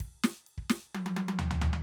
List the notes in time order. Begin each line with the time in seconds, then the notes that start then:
0.00 kick, ride
0.24 snare, ride
0.46 ride
0.58 kick
0.70 snare, ride
0.95 high tom
1.06 high tom
1.17 high tom
1.28 high tom
1.39 floor tom
1.51 floor tom
1.61 floor tom
1.73 floor tom